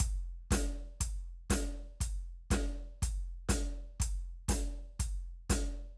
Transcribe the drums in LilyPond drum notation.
\new DrumStaff \drummode { \time 4/4 \tempo 4 = 120 <bd hho>4 <bd sn hh>4 <bd hh>4 <bd hh sn>4 | <bd hh>4 <bd hh sn>4 <bd hh>4 <bd sn hh>4 | <bd hh>4 <bd hh sn>4 <bd hh>4 <bd hh sn>4 | }